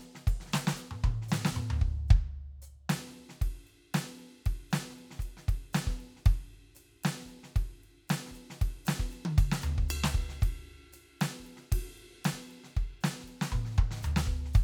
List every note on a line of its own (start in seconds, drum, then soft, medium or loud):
0.01 hi-hat pedal soft
0.01 crash soft
0.15 snare soft
0.27 kick medium
0.27 crash medium
0.41 snare soft
0.46 snare soft
0.50 snare soft
0.50 hi-hat pedal medium
0.54 snare loud
0.67 snare loud
0.73 kick soft
0.73 hi-hat pedal medium
0.81 ride soft
0.91 mid tom medium
1.04 kick medium
1.04 mid tom loud
1.22 snare soft
1.29 snare loud
1.29 hi-hat pedal medium
1.45 snare loud
1.52 kick soft
1.52 hi-hat pedal soft
1.56 mid tom loud
1.70 floor tom loud
1.82 kick medium
2.09 kick loud
2.09 hi-hat pedal soft
2.62 hi-hat pedal medium
2.90 snare loud
2.90 ride medium
3.07 snare soft
3.29 snare soft
3.42 kick medium
3.42 ride medium
3.67 hi-hat pedal soft
3.67 ride soft
3.94 snare loud
3.94 ride medium
4.20 ride soft
4.32 snare soft
4.46 kick medium
4.46 ride medium
4.71 snare loud
4.71 hi-hat pedal soft
4.71 ride medium
4.90 snare soft
4.99 ride soft
5.11 snare soft
5.15 snare soft
5.20 kick soft
5.20 hi-hat pedal soft
5.20 ride soft
5.37 snare soft
5.49 kick medium
5.49 ride medium
5.73 snare loud
5.73 hi-hat pedal medium
5.73 ride medium
5.87 kick medium
5.87 snare soft
6.01 ride soft
6.17 snare soft
6.26 kick loud
6.26 ride medium
6.52 ride soft
6.75 hi-hat pedal soft
6.75 ride soft
7.04 snare loud
7.04 ride medium
7.20 snare soft
7.26 kick soft
7.26 hi-hat pedal soft
7.31 ride soft
7.44 snare soft
7.56 kick medium
7.56 ride medium
7.84 ride soft
8.08 snare loud
8.08 hi-hat pedal soft
8.08 ride medium
8.27 snare soft
8.31 kick soft
8.31 hi-hat pedal soft
8.36 ride soft
8.50 snare medium
8.62 kick medium
8.62 ride medium
8.86 snare loud
8.86 hi-hat pedal medium
8.86 ride medium
9.00 kick medium
9.00 snare soft
9.10 hi-hat pedal soft
9.10 ride bell soft
9.25 high tom loud
9.38 kick loud
9.38 ride bell medium
9.52 snare loud
9.61 floor tom loud
9.61 hi-hat pedal medium
9.78 kick medium
9.89 hi-hat pedal medium
9.89 ride bell loud
10.04 snare loud
10.15 kick medium
10.29 snare soft
10.41 kick medium
10.41 hi-hat pedal soft
10.41 ride medium
10.93 hi-hat pedal soft
10.93 ride soft
11.21 snare loud
11.21 ride medium
11.38 kick soft
11.38 snare soft
11.44 hi-hat pedal soft
11.44 ride soft
11.57 snare soft
11.72 kick medium
11.72 ride loud
11.98 ride soft
12.25 snare loud
12.25 ride bell medium
12.33 kick soft
12.48 hi-hat pedal soft
12.48 ride soft
12.64 snare soft
12.77 kick medium
12.77 ride bell soft
13.01 snare loud
13.01 hi-hat pedal soft
13.01 ride bell soft
13.20 kick soft
13.20 snare soft
13.28 ride bell soft
13.42 snare loud
13.52 kick medium
13.52 mid tom loud
13.65 snare soft
13.71 snare soft
13.75 kick loud
13.75 snare soft
13.75 mid tom medium
13.91 snare medium
13.96 snare medium
14.01 kick soft
14.01 snare soft
14.01 floor tom loud
14.01 hi-hat pedal medium
14.16 snare loud
14.27 kick medium
14.45 snare soft
14.54 kick loud
14.54 hi-hat pedal medium
14.54 ride bell soft